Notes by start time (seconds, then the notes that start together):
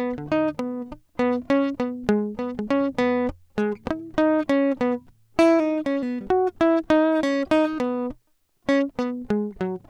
0.01 B3
0.34 D#4
0.61 B3
1.21 B3
1.52 C#4
1.81 B3
2.10 G#3
2.41 B3
2.61 G#3
2.72 C#4
3.00 B3
3.60 G#3
3.92 E4
4.20 D#4
4.51 C#4
4.83 B3
5.41 E4
5.61 D#4
5.88 C#4
6.04 B3
6.32 F#4
6.62 E4
6.92 D#4
7.25 C#4
7.53 D#4
7.82 B3
8.70 C#4
9.01 B3
9.32 G#3
9.62 F#3